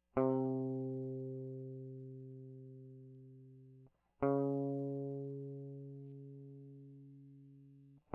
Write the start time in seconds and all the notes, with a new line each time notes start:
0.18 C3
4.24 C#3